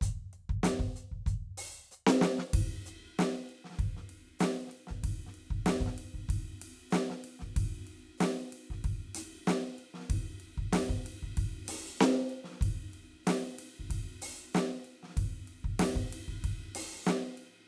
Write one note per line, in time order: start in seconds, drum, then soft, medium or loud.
0.01 closed hi-hat loud
0.01 kick medium
0.33 closed hi-hat soft
0.49 kick medium
0.63 closed hi-hat loud
0.63 snare loud
0.79 kick medium
0.96 closed hi-hat medium
1.11 kick soft
1.26 closed hi-hat medium
1.26 kick medium
1.57 open hi-hat loud
1.91 hi-hat pedal medium
1.91 open hi-hat soft
2.07 snare loud
2.21 snare loud
2.38 snare medium
2.53 kick loud
2.53 ride loud
2.86 hi-hat pedal medium
2.86 ride soft
3.19 snare loud
3.19 ride medium
3.49 ride soft
3.64 snare soft
3.70 snare soft
3.73 snare soft
3.76 kick medium
3.76 snare soft
3.76 ride soft
3.96 snare soft
4.09 ride medium
4.39 snare loud
4.39 hi-hat pedal medium
4.39 ride medium
4.67 snare soft
4.71 ride soft
4.87 kick soft
4.87 snare soft
5.03 kick medium
5.03 ride medium
5.26 snare soft
5.34 ride soft
5.50 kick medium
5.66 snare loud
5.66 ride medium
5.80 kick medium
5.86 snare soft
5.98 ride medium
6.14 kick soft
6.29 kick medium
6.29 ride medium
6.62 ride medium
6.90 snare loud
6.90 hi-hat pedal medium
6.90 ride medium
7.10 snare soft
7.24 ride medium
7.39 kick soft
7.39 snare soft
7.56 kick medium
7.56 ride medium
7.87 ride soft
8.18 snare loud
8.18 hi-hat pedal soft
8.18 ride medium
8.52 ride medium
8.70 kick soft
8.70 snare soft
8.84 kick medium
8.84 ride medium
9.15 open hi-hat loud
9.15 ride loud
9.47 snare loud
9.47 hi-hat pedal medium
9.47 ride soft
9.78 ride soft
9.94 snare soft
9.98 snare soft
10.01 snare soft
10.03 snare soft
10.07 kick medium
10.07 snare soft
10.07 ride medium
10.40 ride soft
10.57 kick medium
10.73 snare loud
10.73 ride loud
10.89 kick medium
11.06 ride medium
11.22 kick soft
11.37 kick medium
11.37 ride medium
11.65 open hi-hat loud
11.65 hi-hat pedal soft
11.65 ride loud
12.00 snare loud
12.00 hi-hat pedal medium
12.00 ride soft
12.29 ride soft
12.44 snare soft
12.48 snare soft
12.51 snare soft
12.53 snare soft
12.55 snare soft
12.59 kick medium
12.59 snare soft
12.59 ride medium
12.93 ride soft
13.24 snare loud
13.24 hi-hat pedal soft
13.24 ride loud
13.59 ride medium
13.79 kick soft
13.90 kick medium
13.90 ride medium
14.22 open hi-hat loud
14.22 ride medium
14.54 snare loud
14.54 hi-hat pedal medium
14.54 ride medium
14.84 ride soft
15.03 snare soft
15.06 snare soft
15.09 snare soft
15.14 kick medium
15.14 snare soft
15.14 ride medium
15.48 ride soft
15.64 kick medium
15.77 snare loud
15.77 hi-hat pedal soft
15.77 ride loud
15.95 kick medium
16.13 ride medium
16.28 kick soft
16.44 kick medium
16.44 ride medium
16.75 open hi-hat loud
16.75 ride loud
17.06 snare loud
17.06 hi-hat pedal medium
17.06 ride soft
17.37 ride soft